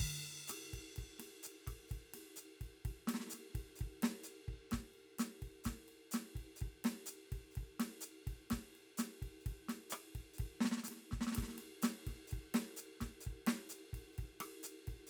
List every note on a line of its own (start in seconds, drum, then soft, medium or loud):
0.01 kick soft
0.01 ride soft
0.07 kick soft
0.18 snare soft
0.28 ride soft
0.48 cross-stick soft
0.48 snare soft
0.48 hi-hat pedal medium
0.48 ride medium
0.74 kick soft
0.74 ride soft
0.79 kick soft
0.97 kick soft
0.97 ride soft
1.04 kick soft
1.20 snare soft
1.20 ride medium
1.44 hi-hat pedal medium
1.44 ride soft
1.67 kick soft
1.67 cross-stick soft
1.67 snare soft
1.67 ride medium
1.73 kick soft
1.83 snare soft
1.89 kick soft
1.89 hi-hat pedal soft
1.89 ride soft
1.97 kick soft
2.14 snare soft
2.14 ride medium
2.37 hi-hat pedal medium
2.37 ride soft
2.62 kick soft
2.62 ride soft
2.67 kick soft
2.86 kick soft
2.86 ride soft
2.91 kick soft
3.08 snare medium
3.08 ride medium
3.15 snare medium
3.21 snare soft
3.27 snare soft
3.27 hi-hat pedal medium
3.34 snare soft
3.34 ride soft
3.39 snare soft
3.44 snare soft
3.50 snare soft
3.55 kick soft
3.55 snare soft
3.55 ride soft
3.58 kick soft
3.58 snare soft
3.76 hi-hat pedal soft
3.76 ride soft
3.81 kick soft
3.87 kick soft
4.03 snare medium
4.03 ride medium
4.24 hi-hat pedal medium
4.24 ride soft
4.49 kick soft
4.49 ride soft
4.54 kick soft
4.72 kick soft
4.72 snare medium
4.72 hi-hat pedal soft
4.72 ride medium
4.80 kick soft
4.94 ride soft
5.19 snare medium
5.19 hi-hat pedal medium
5.19 ride medium
5.43 kick soft
5.43 ride soft
5.48 kick soft
5.65 kick soft
5.65 snare medium
5.65 hi-hat pedal medium
5.65 ride medium
5.72 kick soft
5.89 ride soft
6.12 snare medium
6.12 hi-hat pedal medium
6.12 ride medium
6.36 kick soft
6.36 ride soft
6.41 kick soft
6.57 hi-hat pedal soft
6.62 kick soft
6.62 ride soft
6.68 kick soft
6.85 snare medium
6.85 ride medium
7.07 hi-hat pedal medium
7.07 ride soft
7.33 kick soft
7.33 ride soft
7.38 kick soft
7.52 hi-hat pedal soft
7.56 kick soft
7.56 ride soft
7.63 kick soft
7.80 snare medium
7.80 ride medium
8.02 hi-hat pedal medium
8.02 ride soft
8.28 kick soft
8.28 ride soft
8.33 kick soft
8.51 kick soft
8.51 snare medium
8.51 ride medium
8.58 kick soft
8.76 ride soft
8.98 snare medium
8.98 hi-hat pedal medium
8.98 ride medium
9.23 kick soft
9.23 ride soft
9.28 kick soft
9.41 hi-hat pedal soft
9.47 kick soft
9.47 ride soft
9.52 kick soft
9.69 snare medium
9.69 ride medium
9.91 cross-stick medium
9.91 hi-hat pedal medium
9.91 ride medium
10.16 kick soft
10.16 ride soft
10.21 kick soft
10.34 hi-hat pedal soft
10.39 kick soft
10.39 ride medium
10.46 kick soft
10.61 snare medium
10.65 snare medium
10.72 snare medium
10.78 snare soft
10.84 snare soft
10.84 hi-hat pedal medium
10.89 snare soft
10.89 ride medium
10.97 snare soft
11.02 snare soft
11.12 kick soft
11.12 snare soft
11.19 kick soft
11.19 snare medium
11.27 snare medium
11.32 snare medium
11.32 ride medium
11.37 kick soft
11.37 snare soft
11.43 kick soft
11.43 snare soft
11.49 snare soft
11.54 snare soft
11.58 snare soft
11.58 ride medium
11.61 snare soft
11.83 snare medium
11.83 hi-hat pedal medium
11.83 ride medium
12.07 kick soft
12.07 snare soft
12.07 ride soft
12.13 kick soft
12.13 snare soft
12.28 hi-hat pedal soft
12.32 kick soft
12.32 ride soft
12.39 kick soft
12.55 snare medium
12.55 ride medium
12.77 hi-hat pedal medium
12.77 ride soft
13.01 kick soft
13.01 snare soft
13.01 ride soft
13.08 kick soft
13.21 hi-hat pedal medium
13.26 kick soft
13.26 ride soft
13.33 kick soft
13.47 snare medium
13.47 ride medium
13.70 hi-hat pedal medium
13.70 ride soft
13.94 kick soft
13.94 ride soft
13.99 kick soft
14.13 hi-hat pedal soft
14.19 kick soft
14.19 ride soft
14.25 kick soft
14.41 cross-stick medium
14.41 ride medium
14.64 hi-hat pedal medium
14.64 ride soft
14.88 kick soft
14.88 ride soft
14.94 kick soft
15.07 hi-hat pedal soft